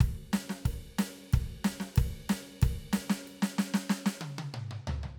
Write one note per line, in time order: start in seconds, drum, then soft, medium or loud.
0.00 kick loud
0.00 ride medium
0.33 snare loud
0.33 ride medium
0.49 snare medium
0.65 kick loud
0.65 ride loud
0.98 snare loud
0.98 ride loud
1.33 kick loud
1.33 ride medium
1.64 snare loud
1.64 ride medium
1.80 snare medium
1.96 kick loud
1.96 ride loud
2.29 snare loud
2.29 ride loud
2.62 kick loud
2.62 ride loud
2.93 snare loud
2.93 ride loud
3.10 snare loud
3.27 ride medium
3.42 snare loud
3.58 snare loud
3.74 snare loud
3.89 snare loud
4.06 snare loud
4.21 high tom loud
4.38 high tom loud
4.54 mid tom loud
4.71 mid tom loud
4.87 floor tom loud
5.03 floor tom medium